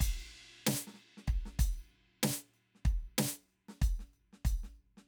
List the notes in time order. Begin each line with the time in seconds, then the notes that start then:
0.01 closed hi-hat, kick
0.67 snare, closed hi-hat
0.88 snare
0.95 snare
0.97 snare, closed hi-hat
1.18 snare
1.28 kick, closed hi-hat
1.46 snare
1.60 closed hi-hat, kick
2.24 snare, closed hi-hat
2.54 closed hi-hat
2.76 snare
2.86 kick, closed hi-hat
3.19 closed hi-hat, snare
3.51 closed hi-hat
3.69 snare
3.82 closed hi-hat, kick
4.00 snare
4.14 closed hi-hat
4.34 snare
4.45 closed hi-hat, kick
4.64 snare
4.77 closed hi-hat
4.98 snare